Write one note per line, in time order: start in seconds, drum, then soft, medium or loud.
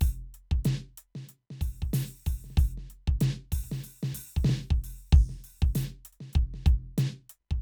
0.01 open hi-hat medium
0.01 kick medium
0.09 hi-hat pedal soft
0.34 closed hi-hat medium
0.51 kick medium
0.65 closed hi-hat medium
0.65 snare loud
0.98 closed hi-hat medium
1.15 snare medium
1.29 closed hi-hat medium
1.51 snare soft
1.61 open hi-hat medium
1.61 kick medium
1.82 kick medium
1.94 open hi-hat loud
1.94 snare loud
2.26 open hi-hat medium
2.26 kick medium
2.44 snare soft
2.50 snare soft
2.57 open hi-hat medium
2.57 kick loud
2.78 snare soft
2.90 closed hi-hat medium
3.08 kick medium
3.21 closed hi-hat loud
3.21 snare loud
3.52 open hi-hat medium
3.52 kick medium
3.64 kick soft
3.72 snare medium
3.84 open hi-hat medium
4.03 snare medium
4.12 open hi-hat loud
4.12 kick soft
4.37 kick medium
4.45 kick soft
4.45 snare loud
4.49 snare medium
4.71 kick medium
4.84 open hi-hat medium
5.13 kick loud
5.13 crash soft
5.29 snare soft
5.44 open hi-hat medium
5.62 kick medium
5.75 open hi-hat medium
5.75 snare loud
5.81 hi-hat pedal soft
6.05 closed hi-hat medium
6.13 closed hi-hat soft
6.21 snare soft
6.33 closed hi-hat soft
6.33 kick medium
6.54 snare soft
6.66 closed hi-hat soft
6.66 kick loud
6.98 closed hi-hat loud
6.98 snare loud
7.30 closed hi-hat medium
7.51 kick medium